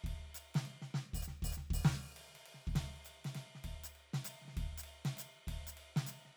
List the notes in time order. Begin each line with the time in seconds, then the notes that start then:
0.01 kick, snare
0.04 snare, ride
0.24 snare
0.35 ride, percussion
0.55 snare, ride
0.65 ride
0.82 snare
0.94 snare
1.14 kick, percussion
1.23 percussion
1.28 snare
1.42 kick, percussion
1.53 percussion
1.57 snare
1.71 kick, percussion
1.85 snare
2.17 ride
2.34 snare, ride
2.46 ride
2.54 snare
2.67 kick
2.75 snare, ride
3.05 ride, percussion
3.25 snare, ride
3.35 snare, ride
3.55 snare
3.64 kick, ride
3.84 percussion
3.95 ride
4.14 snare, ride
4.25 ride, percussion
4.42 snare
4.45 snare
4.48 snare
4.53 kick, snare, ride
4.78 percussion
4.84 ride
5.05 snare, ride
5.17 ride, percussion
5.36 snare
5.47 kick, ride
5.67 percussion
5.77 ride
5.96 snare, ride
6.07 ride, percussion
6.25 snare